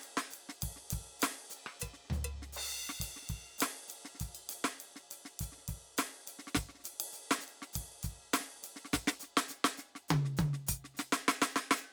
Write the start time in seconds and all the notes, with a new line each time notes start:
0.01 hi-hat pedal, ride
0.17 snare
0.31 hi-hat pedal, ride
0.49 snare
0.61 kick, hi-hat pedal, ride
0.72 kick
0.76 snare
0.82 snare
0.90 kick, hi-hat pedal, ride
1.00 kick
1.20 snare, hi-hat pedal, ride
1.31 snare
1.50 hi-hat pedal, ride
1.66 cross-stick
1.80 kick, hi-hat pedal, percussion
1.94 snare
2.05 snare
2.09 snare, floor tom
2.13 hi-hat pedal
2.25 percussion
2.42 snare
2.53 hi-hat pedal, crash
2.57 snare
2.60 snare
2.89 snare
3.00 kick, hi-hat pedal, ride
3.16 snare
3.23 snare
3.27 kick, snare, hi-hat pedal, ride
3.38 kick
3.59 snare, hi-hat pedal, ride
3.88 hi-hat pedal, ride
4.05 snare
4.15 snare
4.20 kick, hi-hat pedal, ride
4.25 cross-stick
4.35 ride bell
4.49 hi-hat pedal, ride
4.64 snare
4.79 hi-hat pedal, ride
4.96 snare
5.11 hi-hat pedal, ride
5.25 snare
5.40 kick, hi-hat pedal, ride
5.52 snare
5.58 snare
5.63 snare
5.68 kick, hi-hat pedal, ride
5.98 snare, hi-hat pedal, ride
6.10 snare
6.27 hi-hat pedal, ride
6.39 snare
6.47 snare
6.55 kick, snare, hi-hat pedal
6.63 kick
6.66 kick, snare
6.75 snare
6.80 snare
6.84 snare, hi-hat pedal, ride
6.93 snare
7.00 ride
7.13 hi-hat pedal
7.31 snare
7.39 snare, hi-hat pedal
7.48 ride
7.62 snare
7.73 kick, hi-hat pedal, ride
7.81 snare
7.86 snare
8.01 kick, snare, hi-hat pedal, ride
8.13 kick
8.33 snare, hi-hat pedal, ride
8.41 snare
8.63 hi-hat pedal, ride
8.76 snare
8.85 snare
8.93 kick, snare, hi-hat pedal
9.08 snare
9.13 snare
9.20 snare, hi-hat pedal
9.37 snare
9.49 snare, hi-hat pedal
9.65 snare
9.78 snare, hi-hat pedal
9.96 snare
10.09 kick, hi-hat pedal, high tom
10.25 snare
10.37 kick, hi-hat pedal, high tom
10.45 kick
10.54 snare
10.67 kick, closed hi-hat, hi-hat pedal
10.85 snare
10.94 snare, hi-hat pedal
10.99 snare
11.13 snare
11.28 snare, hi-hat pedal
11.42 snare
11.50 hi-hat pedal
11.56 snare
11.71 snare
11.76 hi-hat pedal